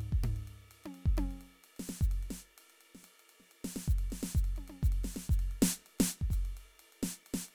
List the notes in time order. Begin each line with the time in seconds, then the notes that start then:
0.01 ride
0.13 kick
0.24 floor tom, ride
0.36 ride
0.48 ride
0.71 ride
0.84 high tom, ride
0.95 ride
1.06 kick
1.17 high tom, ride
1.31 ride
1.41 ride
1.64 ride
1.77 snare, ride
1.88 snare, ride
2.01 kick, hi-hat pedal
2.12 ride
2.23 ride
2.31 snare, ride
2.58 ride
2.70 ride
2.81 ride
2.95 snare
3.03 snare, ride
3.20 ride
3.29 ride
3.40 snare
3.51 ride
3.65 snare, ride
3.76 snare, ride
3.88 kick, hi-hat pedal
3.99 ride
4.11 snare, ride
4.21 snare, ride
4.35 kick, hi-hat pedal
4.45 ride
4.57 high tom, ride
4.68 high tom, ride
4.83 kick, hi-hat pedal
4.92 ride
5.04 snare, ride
5.15 snare, ride
5.30 kick, hi-hat pedal
5.39 ride
5.51 ride
5.62 snare, ride
5.86 ride
5.99 snare, ride
6.10 ride
6.22 kick
6.31 kick, hi-hat pedal, ride
6.45 ride
6.57 ride
6.80 ride
6.93 ride
7.03 snare, ride
7.26 ride
7.34 snare, ride
7.49 ride